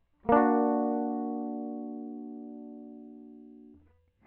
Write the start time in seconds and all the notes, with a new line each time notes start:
0.29 A#3 D4
0.36 F#4